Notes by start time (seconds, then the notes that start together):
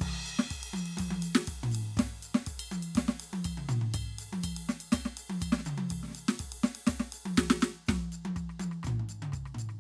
0.01 kick, percussion, ride
0.27 ride, percussion
0.40 snare
0.51 kick, ride, percussion
0.64 ride
0.74 high tom, percussion
0.87 ride
0.98 kick, high tom, ride, percussion
1.11 high tom
1.23 ride, percussion
1.36 snare
1.48 kick, ride, percussion
1.64 floor tom
1.72 ride, percussion
1.97 kick, snare, ride, percussion
2.23 ride bell, percussion
2.35 snare
2.47 kick, ride, percussion
2.60 ride bell
2.72 high tom, percussion
2.83 ride bell
2.96 kick, snare, ride, percussion
3.09 snare
3.21 ride, percussion
3.34 high tom
3.45 kick, ride bell, percussion
3.58 mid tom
3.67 kick, floor tom, percussion
3.82 floor tom
3.95 kick, ride bell, percussion
4.19 ride, percussion
4.33 high tom
4.44 kick, ride bell, percussion
4.57 ride
4.70 snare, percussion
4.81 ride bell
4.93 kick, snare, ride bell, percussion
5.06 snare
5.18 ride, percussion
5.30 high tom
5.41 kick, ride bell, percussion
5.53 snare
5.59 snare
5.66 mid tom, percussion
5.78 high tom
5.90 kick, ride, percussion
6.04 snare
6.09 snare
6.11 snare
6.16 ride, percussion
6.29 snare
6.40 kick, ride, percussion
6.53 ride
6.64 snare, percussion
6.76 ride
6.87 kick, snare, ride, percussion
7.00 snare
7.13 ride, percussion
7.26 high tom
7.37 kick, snare, percussion
7.51 snare
7.62 snare, percussion
7.87 kick, snare, high tom, percussion
8.13 percussion
8.26 high tom
8.37 kick, cross-stick, percussion
8.50 cross-stick
8.60 high tom, percussion
8.72 cross-stick
8.84 kick, cross-stick, percussion
8.87 cross-stick, floor tom
9.00 floor tom
9.10 percussion
9.23 mid tom
9.33 kick, cross-stick, percussion
9.46 cross-stick
9.55 floor tom, percussion
9.70 cross-stick